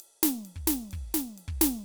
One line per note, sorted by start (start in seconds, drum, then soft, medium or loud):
0.00 ride medium
0.23 snare loud
0.23 ride medium
0.45 ride medium
0.56 kick soft
0.67 snare loud
0.67 ride medium
0.91 kick soft
0.91 ride medium
1.14 snare medium
1.14 ride medium
1.38 ride medium
1.48 kick soft
1.61 snare loud
1.61 ride medium